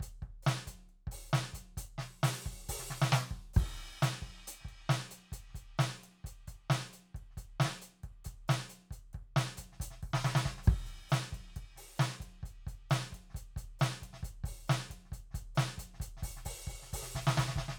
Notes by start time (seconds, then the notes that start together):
0.01 closed hi-hat, kick
0.23 kick, closed hi-hat
0.43 snare, hi-hat pedal
0.68 closed hi-hat, kick
0.90 closed hi-hat
1.08 kick
1.12 open hi-hat
1.30 hi-hat pedal
1.34 snare
1.54 closed hi-hat, kick
1.78 closed hi-hat, kick
1.99 open hi-hat, snare
2.24 open hi-hat, snare
2.44 open hi-hat, kick, snare
2.62 snare
2.70 open hi-hat, kick
2.80 snare
2.91 snare
3.03 snare
3.09 snare, hi-hat pedal
3.32 kick
3.54 kick, hi-hat pedal
3.59 crash
3.78 closed hi-hat
4.03 closed hi-hat, snare
4.23 kick
4.48 closed hi-hat
4.62 kick, snare
4.70 closed hi-hat
4.90 snare
5.12 closed hi-hat, kick
5.33 closed hi-hat, kick
5.49 snare
5.55 closed hi-hat, kick
5.79 snare, hi-hat pedal
6.04 closed hi-hat
6.25 closed hi-hat, kick
6.48 closed hi-hat, kick
6.71 snare
6.77 snare
6.94 closed hi-hat
7.15 kick, closed hi-hat
7.31 snare
7.38 closed hi-hat, kick
7.61 snare, hi-hat pedal
7.66 snare
7.82 closed hi-hat
8.04 kick, closed hi-hat
8.25 closed hi-hat, kick
8.49 snare, hi-hat pedal
8.70 closed hi-hat
8.92 closed hi-hat, kick
9.14 kick, closed hi-hat
9.37 snare, hi-hat pedal
9.58 closed hi-hat, kick
9.73 snare
9.81 closed hi-hat, kick
9.91 snare
10.04 kick, open hi-hat
10.14 snare
10.25 snare, hi-hat pedal
10.36 snare
10.46 kick, snare
10.58 snare
10.64 hi-hat pedal
10.68 kick, crash
10.87 closed hi-hat
11.10 snare, hi-hat pedal
11.33 kick, closed hi-hat
11.57 kick, closed hi-hat
11.77 open hi-hat, snare
11.98 snare, hi-hat pedal
12.21 kick, closed hi-hat
12.42 kick, snare
12.46 closed hi-hat
12.68 closed hi-hat, kick
12.91 snare, hi-hat pedal
12.97 snare
13.13 kick, closed hi-hat
13.31 snare
13.35 closed hi-hat, kick
13.57 closed hi-hat, kick
13.80 snare, hi-hat pedal
14.03 kick, closed hi-hat
14.14 snare
14.24 closed hi-hat, kick
14.45 open hi-hat, kick
14.68 snare, hi-hat pedal
14.91 kick, closed hi-hat
15.06 snare
15.13 closed hi-hat, kick
15.32 closed hi-hat, kick, snare
15.56 snare, hi-hat pedal
15.79 closed hi-hat, kick
15.95 snare
16.01 closed hi-hat, kick
16.18 snare
16.23 open hi-hat, kick
16.37 snare
16.46 open hi-hat, kick
16.68 open hi-hat, kick
16.83 snare
16.94 open hi-hat, kick
17.03 snare
17.16 kick, snare
17.28 snare
17.38 kick, snare
17.49 snare
17.57 kick, snare
17.69 snare